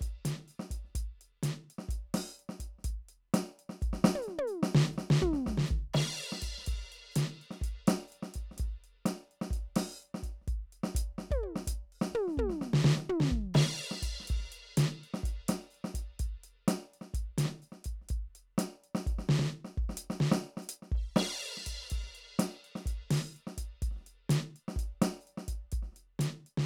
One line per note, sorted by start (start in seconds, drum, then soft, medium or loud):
0.01 closed hi-hat medium
0.01 kick soft
0.25 closed hi-hat loud
0.25 snare medium
0.37 snare soft
0.48 closed hi-hat soft
0.48 hi-hat pedal medium
0.60 snare soft
0.71 closed hi-hat medium
0.71 kick soft
0.85 snare soft
0.95 closed hi-hat medium
0.95 kick soft
1.01 kick soft
1.21 closed hi-hat soft
1.43 closed hi-hat loud
1.43 snare medium
1.70 closed hi-hat soft
1.79 snare soft
1.89 closed hi-hat medium
1.89 kick soft
1.89 snare soft
2.14 open hi-hat loud
2.14 snare medium
2.35 hi-hat pedal soft
2.39 closed hi-hat soft
2.49 snare soft
2.60 closed hi-hat medium
2.60 kick soft
2.79 snare soft
2.84 closed hi-hat medium
2.84 kick soft
2.90 kick soft
3.09 closed hi-hat soft
3.34 closed hi-hat loud
3.34 snare medium
3.43 snare soft
3.59 closed hi-hat soft
3.70 snare soft
3.81 kick soft
3.81 closed hi-hat soft
3.81 hi-hat pedal soft
3.91 kick soft
3.91 snare soft
4.03 kick soft
4.03 snare loud
4.15 high tom loud
4.22 hi-hat pedal medium
4.28 snare soft
4.38 high tom loud
4.48 hi-hat pedal medium
4.63 snare medium
4.75 snare loud
4.85 snare soft
4.92 kick soft
4.92 hi-hat pedal soft
4.98 snare medium
5.10 snare loud
5.10 hi-hat pedal soft
5.21 kick soft
5.21 floor tom loud
5.33 snare soft
5.47 kick soft
5.47 snare medium
5.58 snare medium
5.66 hi-hat pedal medium
5.71 kick soft
5.77 kick soft
5.94 snare medium
5.94 crash loud
6.11 hi-hat pedal soft
6.19 closed hi-hat soft
6.32 snare soft
6.42 closed hi-hat medium
6.42 kick soft
6.58 snare soft
6.67 closed hi-hat medium
6.67 kick soft
6.74 kick soft
6.92 closed hi-hat soft
7.12 hi-hat pedal soft
7.16 closed hi-hat loud
7.16 snare medium
7.34 hi-hat pedal soft
7.42 closed hi-hat soft
7.51 snare soft
7.62 closed hi-hat medium
7.62 kick soft
7.87 closed hi-hat loud
7.87 snare loud
8.08 hi-hat pedal soft
8.12 closed hi-hat soft
8.23 snare soft
8.32 closed hi-hat medium
8.32 kick soft
8.32 snare soft
8.51 snare soft
8.58 closed hi-hat medium
8.58 kick soft
8.58 snare soft
8.64 kick soft
8.64 snare soft
8.66 snare soft
8.84 closed hi-hat soft
9.06 closed hi-hat medium
9.06 snare medium
9.31 closed hi-hat soft
9.42 snare medium
9.51 closed hi-hat medium
9.51 kick soft
9.57 kick soft
9.76 open hi-hat loud
9.76 snare medium
9.97 hi-hat pedal soft
10.02 closed hi-hat soft
10.14 snare soft
10.23 closed hi-hat medium
10.23 kick soft
10.42 snare soft
10.48 closed hi-hat soft
10.48 kick soft
10.73 closed hi-hat soft
10.84 snare medium
10.95 closed hi-hat loud
10.95 kick soft
11.02 kick soft
11.18 snare soft
11.31 kick soft
11.31 hi-hat pedal soft
11.31 high tom loud
11.37 kick soft
11.43 high tom soft
11.56 snare medium
11.65 closed hi-hat loud
11.65 kick soft
11.65 hi-hat pedal soft
11.92 open hi-hat soft
12.02 snare medium
12.11 kick soft
12.11 mid tom loud
12.28 snare soft
12.32 hi-hat pedal soft
12.37 kick soft
12.37 mid tom loud
12.50 snare soft
12.62 snare soft
12.74 snare loud
12.81 kick soft
12.81 snare loud
12.97 snare soft
13.09 floor tom loud
13.20 snare medium
13.31 kick soft
13.39 kick soft
13.54 snare loud
13.54 crash loud
13.78 closed hi-hat soft
13.91 snare soft
14.01 closed hi-hat medium
14.01 kick soft
14.01 hi-hat pedal soft
14.20 snare soft
14.28 closed hi-hat medium
14.28 kick soft
14.37 kick soft
14.37 snare soft
14.52 closed hi-hat medium
14.77 closed hi-hat loud
14.77 snare loud
15.04 closed hi-hat soft
15.14 snare medium
15.24 closed hi-hat medium
15.24 kick soft
15.49 closed hi-hat loud
15.49 snare medium
15.71 closed hi-hat soft
15.71 hi-hat pedal soft
15.84 snare medium
15.95 closed hi-hat medium
15.95 kick soft
16.20 closed hi-hat medium
16.20 kick soft
16.26 kick soft
16.44 closed hi-hat medium
16.68 closed hi-hat loud
16.68 snare medium
16.94 closed hi-hat soft
17.01 snare soft
17.14 closed hi-hat medium
17.14 kick soft
17.22 kick soft
17.38 closed hi-hat loud
17.38 snare medium
17.45 snare soft
17.62 hi-hat pedal soft
17.72 snare soft
17.85 closed hi-hat medium
17.85 kick soft
18.02 snare soft
18.09 closed hi-hat medium
18.09 kick soft
18.35 closed hi-hat medium
18.58 closed hi-hat loud
18.58 snare medium
18.84 closed hi-hat soft
18.95 snare medium
19.07 kick soft
19.07 closed hi-hat soft
19.19 snare soft
19.29 snare loud
19.39 snare medium
19.65 snare soft
19.78 kick soft
19.84 kick soft
19.90 snare soft
19.97 closed hi-hat loud
20.10 snare medium
20.20 snare medium
20.32 snare loud
20.57 snare soft
20.62 hi-hat pedal medium
20.69 closed hi-hat loud
20.83 snare soft
20.92 kick soft
20.92 crash soft
21.01 kick soft
21.16 snare medium
21.16 crash loud
21.57 snare soft
21.66 closed hi-hat medium
21.66 kick soft
21.90 closed hi-hat medium
21.90 kick soft
22.03 snare soft
22.15 closed hi-hat soft
22.39 closed hi-hat loud
22.39 snare medium
22.64 closed hi-hat soft
22.76 snare soft
22.86 closed hi-hat medium
22.86 kick soft
23.11 open hi-hat loud
23.11 snare medium
23.32 hi-hat pedal soft
23.36 closed hi-hat soft
23.47 snare soft
23.58 closed hi-hat medium
23.58 kick soft
23.82 closed hi-hat medium
23.82 kick soft
23.88 kick soft
23.88 snare soft
23.96 snare soft
23.99 snare soft
24.01 snare soft
24.07 closed hi-hat soft
24.30 closed hi-hat loud
24.30 snare loud
24.56 closed hi-hat soft
24.68 snare soft
24.76 closed hi-hat medium
24.76 kick soft
25.02 closed hi-hat loud
25.02 snare medium
25.21 hi-hat pedal soft
25.27 closed hi-hat soft
25.38 snare soft
25.48 closed hi-hat medium
25.48 kick soft
25.72 closed hi-hat medium
25.72 kick soft
25.83 snare soft
25.88 snare soft
25.96 closed hi-hat soft
26.19 closed hi-hat loud
26.19 snare medium
26.25 snare soft
26.47 closed hi-hat soft
26.58 snare medium